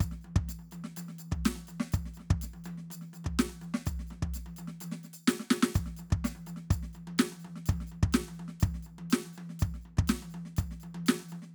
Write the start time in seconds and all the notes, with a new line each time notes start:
0.01 kick, high tom, percussion
0.12 snare
0.22 high tom, percussion
0.36 kick, high tom
0.49 snare, percussion
0.60 high tom
0.72 high tom, percussion
0.84 snare
0.97 high tom, percussion
1.09 snare
1.19 high tom, percussion
1.32 kick, high tom
1.46 snare, percussion
1.56 high tom
1.68 high tom, percussion
1.80 snare
1.93 kick, high tom, percussion
2.06 snare
2.14 high tom, percussion
2.20 snare
2.31 kick, high tom
2.42 snare, percussion
2.54 high tom
2.65 high tom, percussion
2.78 snare
2.91 high tom, percussion
3.02 snare
3.14 high tom, percussion
3.25 kick, high tom
3.40 snare, percussion
3.50 high tom
3.60 kick, high tom, percussion
3.75 snare
3.87 kick, high tom, percussion
4.00 snare
4.08 snare, high tom, percussion
4.23 kick, high tom
4.34 snare, percussion
4.47 high tom
4.57 high tom, percussion
4.68 snare
4.81 high tom, percussion
4.92 snare
5.04 snare, percussion
5.14 percussion
5.28 snare, percussion
5.40 snare
5.51 snare, percussion
5.63 snare
5.75 kick, high tom, percussion
5.87 snare
5.97 high tom, percussion
6.11 kick, high tom
6.25 snare, percussion
6.36 high tom
6.47 high tom, percussion
6.57 snare
6.71 kick, high tom, percussion
6.83 snare
6.94 high tom, percussion
7.08 high tom
7.19 snare, percussion
7.33 high tom
7.40 percussion
7.45 kick, high tom
7.56 snare
7.66 kick, percussion
7.71 high tom
7.81 snare
7.88 percussion
7.92 high tom
8.03 kick, high tom
8.13 snare, percussion
8.29 high tom
8.34 percussion
8.40 high tom
8.49 snare
8.61 kick, high tom, percussion
8.75 snare
8.83 high tom, percussion
8.99 high tom
9.11 snare, percussion
9.26 high tom
9.34 percussion
9.38 high tom
9.50 snare
9.60 kick, high tom, percussion
9.75 snare
9.82 high tom, percussion
9.98 kick, high tom
10.08 snare, percussion
10.23 high tom
10.31 percussion
10.35 high tom
10.46 snare
10.57 kick, high tom, percussion
10.72 snare
10.81 high tom, percussion
10.95 high tom
11.07 snare, percussion
11.20 high tom
11.29 high tom, percussion
11.43 snare